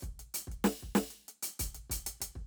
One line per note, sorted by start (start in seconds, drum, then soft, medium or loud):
0.01 kick medium
0.01 closed hi-hat soft
0.01 hi-hat pedal soft
0.20 closed hi-hat medium
0.35 closed hi-hat loud
0.48 kick soft
0.52 closed hi-hat soft
0.65 snare loud
0.81 kick soft
0.81 closed hi-hat soft
0.96 snare loud
1.11 closed hi-hat medium
1.29 closed hi-hat medium
1.43 closed hi-hat loud
1.60 closed hi-hat loud
1.60 kick medium
1.75 closed hi-hat medium
1.90 closed hi-hat loud
1.90 kick medium
2.07 closed hi-hat loud
2.21 kick soft
2.21 closed hi-hat loud
2.36 kick soft